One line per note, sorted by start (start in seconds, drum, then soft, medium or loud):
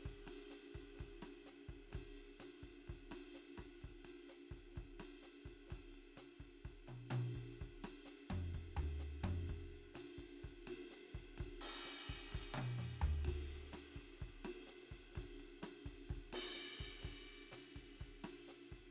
0.01 hi-hat pedal soft
0.01 ride soft
0.06 kick soft
0.06 mid tom soft
0.11 kick soft
0.27 cross-stick soft
0.27 ride medium
0.51 hi-hat pedal medium
0.51 ride soft
0.75 kick soft
0.75 ride soft
0.81 kick soft
0.95 hi-hat pedal soft
0.99 kick soft
0.99 ride soft
1.06 kick soft
1.23 cross-stick soft
1.23 ride medium
1.46 hi-hat pedal medium
1.46 ride soft
1.69 kick soft
1.69 ride soft
1.74 kick soft
1.90 snare soft
1.90 hi-hat pedal soft
1.90 ride medium
1.95 kick soft
2.00 kick soft
2.17 ride soft
2.40 snare soft
2.40 hi-hat pedal medium
2.40 ride medium
2.63 kick soft
2.63 ride soft
2.88 kick soft
2.88 ride soft
2.95 kick soft
3.12 cross-stick soft
3.12 ride medium
3.35 hi-hat pedal medium
3.35 ride soft
3.57 kick soft
3.57 cross-stick soft
3.57 snare soft
3.57 ride medium
3.82 kick soft
3.82 ride soft
3.89 kick soft
4.05 snare soft
4.05 ride medium
4.29 hi-hat pedal medium
4.29 ride soft
4.51 kick soft
4.51 ride soft
4.57 kick soft
4.72 hi-hat pedal soft
4.76 kick soft
4.76 ride soft
4.83 kick soft
5.00 cross-stick soft
5.00 snare soft
5.00 ride medium
5.23 hi-hat pedal medium
5.23 ride soft
5.46 kick soft
5.46 ride soft
5.68 snare soft
5.68 hi-hat pedal soft
5.68 ride medium
5.72 kick soft
5.77 kick soft
5.94 ride soft
6.17 snare soft
6.17 hi-hat pedal medium
6.17 ride medium
6.40 kick soft
6.40 ride soft
6.65 kick soft
6.65 ride soft
6.70 kick soft
6.88 high tom medium
6.88 ride soft
7.11 hi-hat pedal medium
7.11 high tom loud
7.11 ride medium
7.36 kick soft
7.41 kick soft
7.49 snare soft
7.52 snare soft
7.62 kick soft
7.67 kick soft
7.84 cross-stick soft
7.84 snare soft
7.84 ride medium
8.06 hi-hat pedal medium
8.06 ride soft
8.30 kick soft
8.30 mid tom medium
8.30 ride medium
8.37 kick soft
8.55 kick soft
8.55 ride soft
8.60 kick soft
8.77 floor tom medium
8.77 ride medium
9.00 hi-hat pedal medium
9.00 ride soft
9.24 kick soft
9.24 mid tom medium
9.24 ride medium
9.30 kick soft
9.44 hi-hat pedal soft
9.50 kick soft
9.56 kick soft
9.60 snare soft
9.94 snare soft
9.94 hi-hat pedal medium
9.94 ride medium
10.18 kick soft
10.18 ride soft
10.39 hi-hat pedal soft
10.44 kick soft
10.44 ride soft
10.50 kick soft
10.67 snare soft
10.67 ride medium
10.91 hi-hat pedal medium
11.15 kick soft
11.20 kick soft
11.38 kick soft
11.38 ride medium
11.46 kick soft
11.61 crash medium
11.86 hi-hat pedal medium
11.86 ride medium
12.10 kick soft
12.10 ride soft
12.15 kick soft
12.33 kick soft
12.33 ride medium
12.41 kick soft
12.54 high tom medium
12.58 high tom loud
12.78 hi-hat pedal medium
12.78 mid tom soft
13.02 kick soft
13.02 floor tom loud
13.09 kick soft
13.25 kick soft
13.25 cross-stick soft
13.25 snare soft
13.25 ride medium
13.56 snare soft
13.73 cross-stick soft
13.73 snare soft
13.73 hi-hat pedal medium
13.73 ride medium
13.96 kick soft
13.96 ride soft
14.01 kick soft
14.17 hi-hat pedal soft
14.17 ride soft
14.22 kick soft
14.28 kick soft
14.45 cross-stick soft
14.45 snare soft
14.45 ride medium
14.67 hi-hat pedal medium
14.67 ride soft
14.92 kick soft
14.92 ride soft
14.97 kick soft
15.12 snare soft
15.12 hi-hat pedal soft
15.12 ride medium
15.18 kick soft
15.23 kick soft
15.40 ride soft
15.52 snare soft
15.62 cross-stick soft
15.62 snare soft
15.62 hi-hat pedal medium
15.62 ride medium
15.86 kick soft
15.86 ride soft
15.91 kick soft
16.10 kick soft
16.10 ride soft
16.17 kick soft
16.33 ride loud
16.33 crash medium
16.54 hi-hat pedal medium
16.54 ride soft
16.80 kick soft
16.80 ride soft
16.86 kick soft
16.86 snare soft
17.01 kick soft
17.01 hi-hat pedal soft
17.01 ride medium
17.11 kick soft
17.27 ride soft
17.52 snare soft
17.52 hi-hat pedal loud
17.52 ride medium
17.76 kick soft
17.76 ride soft
17.81 kick soft
17.96 hi-hat pedal soft
18.01 kick soft
18.01 ride soft
18.06 kick soft
18.24 cross-stick soft
18.24 snare soft
18.24 ride medium
18.48 hi-hat pedal medium
18.48 ride soft
18.72 kick soft
18.72 ride soft
18.77 kick soft